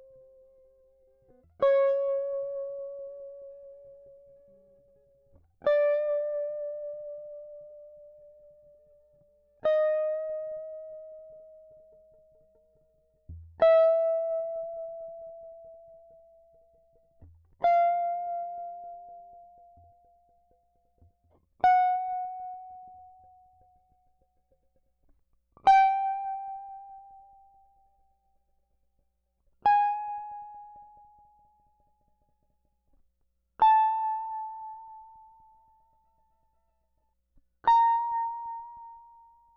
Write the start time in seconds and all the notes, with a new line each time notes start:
1.63 C#5
5.68 D5
9.66 D#5
13.61 E5
17.64 F5
21.64 F#5
25.67 G5
29.66 G#5
33.63 A5
37.68 A#5
38.16 A#5